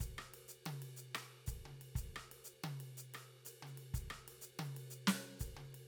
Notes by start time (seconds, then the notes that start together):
0.01 kick, hi-hat pedal, ride
0.19 cross-stick
0.35 ride
0.49 hi-hat pedal
0.66 high tom, ride
0.71 hi-hat pedal
0.83 ride
0.97 hi-hat pedal
1.16 cross-stick, ride
1.47 kick, hi-hat pedal, ride
1.66 high tom
1.82 ride
1.96 kick, hi-hat pedal, ride
2.17 cross-stick
2.32 ride
2.45 hi-hat pedal
2.65 high tom, ride
2.81 ride
2.98 hi-hat pedal
3.15 cross-stick, ride
3.20 hi-hat pedal
3.46 hi-hat pedal, ride
3.63 high tom
3.67 hi-hat pedal
3.78 ride
3.95 kick, hi-hat pedal, ride
4.11 cross-stick
4.29 ride
4.42 hi-hat pedal
4.60 high tom, ride
4.64 hi-hat pedal
4.77 ride
4.91 hi-hat pedal
5.08 snare, ride
5.40 kick, hi-hat pedal, ride
5.57 high tom
5.75 ride